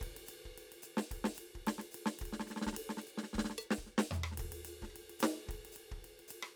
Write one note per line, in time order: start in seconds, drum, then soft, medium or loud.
0.01 kick soft
0.01 ride medium
0.17 ride medium
0.26 hi-hat pedal soft
0.26 ride medium
0.45 kick soft
0.58 ride medium
0.72 ride medium
0.82 hi-hat pedal medium
0.82 ride medium
0.97 snare medium
1.11 kick soft
1.11 ride medium
1.18 kick soft
1.24 snare medium
1.35 hi-hat pedal medium
1.35 ride medium
1.55 kick soft
1.67 snare medium
1.67 ride medium
1.78 snare soft
1.78 ride soft
1.91 hi-hat pedal soft
1.91 ride medium
2.06 snare medium
2.19 kick soft
2.19 ride medium
2.26 kick soft
2.26 ride medium
2.33 snare soft
2.40 snare soft
2.46 snare soft
2.46 hi-hat pedal soft
2.50 snare soft
2.56 snare soft
2.62 snare medium
2.66 kick soft
2.66 snare medium
2.73 snare soft
2.73 ride medium
2.89 snare soft
2.97 snare soft
3.02 ride soft
3.07 hi-hat pedal soft
3.07 ride soft
3.18 snare medium
3.23 snare soft
3.33 kick soft
3.33 snare soft
3.38 kick soft
3.38 snare medium
3.45 snare medium
3.50 snare soft
3.58 hi-hat pedal medium
3.58 percussion medium
3.71 snare medium
3.78 kick soft
3.86 snare soft
3.98 snare medium
4.11 floor tom medium
4.11 hi-hat pedal soft
4.24 cross-stick medium
4.32 snare soft
4.38 kick soft
4.38 ride medium
4.45 kick soft
4.52 ride medium
4.65 hi-hat pedal medium
4.65 ride medium
4.82 kick soft
4.82 snare soft
4.90 cross-stick soft
4.96 ride medium
5.01 snare soft
5.10 ride soft
5.19 snare medium
5.19 hi-hat pedal medium
5.19 ride medium
5.46 kick soft
5.46 snare soft
5.51 snare soft
5.51 ride medium
5.56 kick soft
5.56 snare soft
5.65 ride medium
5.72 hi-hat pedal medium
5.76 ride medium
5.92 kick soft
6.04 ride soft
6.19 ride soft
6.28 hi-hat pedal medium
6.28 ride medium
6.43 cross-stick medium